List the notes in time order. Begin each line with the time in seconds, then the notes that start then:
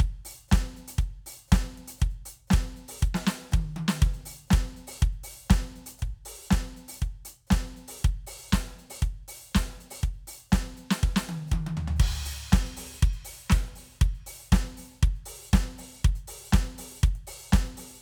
0.01 kick, closed hi-hat
0.11 closed hi-hat
0.26 open hi-hat
0.49 snare, hi-hat pedal
0.53 kick
0.77 closed hi-hat
0.89 closed hi-hat
0.95 hi-hat pedal
0.99 closed hi-hat, kick
1.11 closed hi-hat
1.27 open hi-hat
1.49 hi-hat pedal
1.53 kick, snare
1.66 closed hi-hat
1.78 closed hi-hat
1.88 closed hi-hat
1.98 closed hi-hat, hi-hat pedal
2.02 kick
2.11 closed hi-hat
2.26 open hi-hat
2.41 open hi-hat
2.48 snare, hi-hat pedal
2.54 kick
2.64 closed hi-hat
2.77 closed hi-hat
2.89 open hi-hat
3.01 closed hi-hat, kick, hi-hat pedal
3.15 snare
3.27 snare
3.52 kick, hi-hat pedal, high tom
3.77 high tom
3.89 snare
4.03 closed hi-hat, kick
4.14 closed hi-hat
4.26 open hi-hat
4.48 snare, hi-hat pedal
4.54 kick
4.65 closed hi-hat
4.77 closed hi-hat
4.88 open hi-hat
4.98 hi-hat pedal
5.02 kick, closed hi-hat
5.13 closed hi-hat
5.24 open hi-hat
5.47 snare, hi-hat pedal
5.51 kick
5.76 closed hi-hat
5.87 closed hi-hat
5.99 closed hi-hat, hi-hat pedal
6.03 kick
6.26 open hi-hat
6.48 snare, hi-hat pedal
6.53 kick
6.75 closed hi-hat, kick
6.89 open hi-hat
6.98 closed hi-hat, hi-hat pedal
7.03 kick
7.10 closed hi-hat
7.26 open hi-hat
7.42 open hi-hat
7.48 snare, hi-hat pedal
7.53 kick
7.67 closed hi-hat
7.77 closed hi-hat
7.89 open hi-hat
8.02 kick, closed hi-hat, hi-hat pedal
8.15 closed hi-hat
8.28 open hi-hat
8.44 open hi-hat
8.49 snare, hi-hat pedal
8.54 kick
8.80 closed hi-hat
8.91 open hi-hat
9.00 kick, hi-hat pedal
9.05 closed hi-hat
9.15 closed hi-hat
9.24 kick
9.29 open hi-hat
9.52 snare, hi-hat pedal
9.57 kick
9.81 open hi-hat
9.91 open hi-hat
10.00 closed hi-hat, hi-hat pedal
10.04 kick
10.15 closed hi-hat
10.28 open hi-hat
10.50 kick, snare, hi-hat pedal
10.68 closed hi-hat
10.74 open hi-hat, kick
10.91 snare
10.98 hi-hat pedal
11.04 kick
11.17 snare
11.30 high tom
11.48 hi-hat pedal
11.52 kick, high tom
11.67 high tom
11.78 floor tom
11.88 floor tom
11.97 kick, hi-hat pedal
12.01 crash
12.26 open hi-hat
12.50 kick, snare, hi-hat pedal
12.67 closed hi-hat
12.78 open hi-hat
12.92 open hi-hat
12.98 hi-hat pedal
13.03 closed hi-hat, kick
13.14 closed hi-hat
13.26 open hi-hat
13.47 snare, hi-hat pedal
13.53 kick
13.67 closed hi-hat
13.74 open hi-hat, kick
13.91 open hi-hat
13.97 hi-hat pedal
14.02 kick, closed hi-hat
14.15 closed hi-hat
14.27 open hi-hat
14.40 open hi-hat
14.48 hi-hat pedal
14.53 kick, snare
14.68 closed hi-hat
14.78 open hi-hat
14.92 open hi-hat
14.97 hi-hat pedal
15.04 kick, closed hi-hat
15.16 closed hi-hat
15.26 open hi-hat
15.41 open hi-hat
15.49 hi-hat pedal
15.54 kick, snare
15.79 open hi-hat
15.94 open hi-hat
16.01 hi-hat pedal
16.05 kick, closed hi-hat
16.16 closed hi-hat
16.28 open hi-hat
16.44 open hi-hat
16.50 snare, hi-hat pedal
16.54 kick
16.65 closed hi-hat
16.79 open hi-hat
16.92 open hi-hat
17.00 hi-hat pedal
17.04 closed hi-hat, kick
17.16 closed hi-hat
17.28 open hi-hat
17.44 open hi-hat
17.50 snare, hi-hat pedal
17.54 kick
17.66 closed hi-hat
17.74 open hi-hat, kick
17.91 open hi-hat
17.99 hi-hat pedal